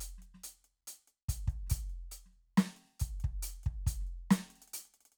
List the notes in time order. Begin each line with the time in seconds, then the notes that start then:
0.01 closed hi-hat
0.18 snare
0.22 closed hi-hat
0.35 snare
0.44 closed hi-hat
0.65 closed hi-hat
0.88 closed hi-hat
1.08 closed hi-hat
1.29 closed hi-hat, kick
1.48 kick, closed hi-hat
1.67 closed hi-hat, snare
1.72 kick
1.90 closed hi-hat
2.12 closed hi-hat
2.26 snare
2.34 closed hi-hat
2.58 closed hi-hat, snare
2.77 closed hi-hat
3.00 closed hi-hat, kick
3.21 kick, closed hi-hat
3.43 closed hi-hat
3.64 kick, closed hi-hat
3.87 closed hi-hat, kick
4.01 snare
4.07 closed hi-hat
4.31 closed hi-hat, snare
4.51 closed hi-hat
4.56 closed hi-hat
4.62 closed hi-hat
4.68 closed hi-hat
4.74 closed hi-hat
4.86 closed hi-hat
4.94 closed hi-hat
5.01 closed hi-hat
5.06 closed hi-hat
5.12 closed hi-hat